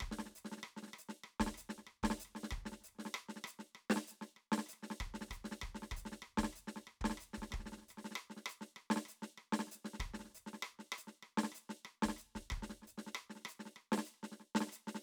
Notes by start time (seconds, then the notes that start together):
0.01 kick, cross-stick
0.12 snare
0.19 snare
0.26 snare
0.31 snare
0.36 cross-stick, hi-hat pedal
0.45 snare
0.52 snare
0.58 snare
0.64 cross-stick
0.77 snare
0.83 snare
0.88 snare
0.94 cross-stick
0.99 hi-hat pedal
1.09 snare
1.24 cross-stick
1.40 kick, snare
1.47 snare
1.55 cross-stick, hi-hat pedal
1.61 cross-stick
1.70 snare
1.79 snare
1.87 cross-stick
2.04 kick, snare
2.11 snare
2.18 snare, hi-hat pedal
2.26 cross-stick
2.31 snare
2.36 snare
2.44 snare
2.51 kick, cross-stick
2.66 snare
2.73 snare
2.81 snare, hi-hat pedal
2.89 cross-stick
2.96 snare
2.99 snare
3.06 snare
3.15 cross-stick
3.29 snare
3.37 snare
3.45 cross-stick, hi-hat pedal
3.60 snare
3.76 cross-stick
3.90 snare
3.97 snare
4.05 cross-stick, hi-hat pedal
4.12 snare
4.22 snare
4.37 cross-stick
4.52 snare
4.58 snare
4.67 cross-stick, hi-hat pedal
4.74 cross-stick
4.80 snare
4.83 snare
4.91 snare
5.01 kick, cross-stick
5.15 snare
5.22 snare
5.28 kick, cross-stick, snare
5.33 hi-hat pedal
5.45 snare
5.52 snare
5.62 kick, cross-stick
5.75 snare
5.83 snare
5.92 kick, cross-stick
5.97 hi-hat pedal
6.06 snare
6.12 snare
6.23 cross-stick
6.38 kick, snare
6.44 snare
6.53 cross-stick, hi-hat pedal
6.68 snare
6.77 snare
6.88 cross-stick
7.02 kick, snare
7.07 kick, snare
7.18 cross-stick, hi-hat pedal
7.24 cross-stick
7.34 snare
7.38 kick
7.43 snare
7.51 kick, cross-stick, snare
7.60 snare
7.66 snare
7.73 snare
7.78 snare
7.82 snare
7.89 cross-stick, hi-hat pedal
7.98 snare
8.05 snare
8.12 snare
8.16 cross-stick
8.30 snare
8.37 snare
8.46 cross-stick, hi-hat pedal
8.62 snare
8.77 cross-stick
8.91 snare
8.97 snare
9.06 cross-stick, hi-hat pedal
9.12 cross-stick
9.23 snare
9.38 cross-stick
9.53 snare
9.60 snare
9.68 snare
9.72 snare, hi-hat pedal
9.85 snare
9.94 snare
10.00 kick, cross-stick
10.14 snare
10.20 snare
10.25 snare
10.31 snare
10.35 cross-stick, hi-hat pedal
10.47 snare
10.54 snare
10.63 cross-stick
10.80 snare
10.93 cross-stick
10.98 hi-hat pedal
11.08 snare
11.23 cross-stick
11.38 snare
11.44 snare
11.52 cross-stick, hi-hat pedal
11.58 cross-stick
11.70 snare
11.86 cross-stick
12.03 kick, snare
12.09 snare
12.17 cross-stick, hi-hat pedal
12.36 kick, snare
12.51 kick, cross-stick
12.63 snare
12.70 snare
12.82 snare
12.88 hi-hat pedal
12.98 snare
13.07 snare
13.15 cross-stick
13.30 snare
13.36 snare
13.41 snare
13.46 cross-stick, hi-hat pedal
13.60 snare
13.66 snare
13.77 cross-stick
13.93 snare
13.98 snare
14.06 cross-stick, hi-hat pedal
14.15 cross-stick
14.24 snare
14.32 snare
14.40 snare
14.56 snare
14.61 snare
14.68 cross-stick, snare
14.73 cross-stick, hi-hat pedal
14.88 snare
14.95 snare